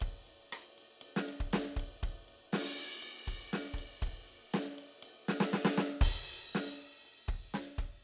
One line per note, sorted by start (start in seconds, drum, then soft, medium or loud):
0.01 kick medium
0.01 ride loud
0.27 ride soft
0.53 cross-stick medium
0.53 ride loud
0.78 ride medium
1.02 ride loud
1.17 snare medium
1.29 ride loud
1.40 kick medium
1.53 snare loud
1.53 ride loud
1.77 kick medium
1.77 ride loud
2.03 kick medium
2.03 ride loud
2.29 ride soft
2.53 snare loud
2.53 ride loud
2.79 ride medium
3.03 ride loud
3.28 kick medium
3.28 ride loud
3.53 snare medium
3.53 ride loud
3.74 kick soft
3.79 ride medium
4.02 kick medium
4.02 ride loud
4.07 kick soft
4.28 ride medium
4.54 snare loud
4.54 ride loud
4.79 ride medium
5.03 ride loud
5.29 snare medium
5.41 snare loud
5.53 snare medium
5.65 snare loud
5.78 snare loud
6.01 kick loud
6.01 crash loud
6.29 open hi-hat soft
6.55 open hi-hat loud
6.55 snare medium
6.81 open hi-hat soft
7.05 closed hi-hat medium
7.28 kick medium
7.28 closed hi-hat loud
7.54 closed hi-hat loud
7.54 snare medium
7.79 closed hi-hat medium
7.79 kick medium